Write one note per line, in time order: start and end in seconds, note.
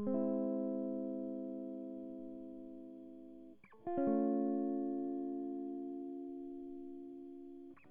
0.00 3.59 G#3
0.07 3.54 C4
0.15 3.56 E4
3.87 7.75 F4
3.98 7.75 C#4
4.08 7.11 A3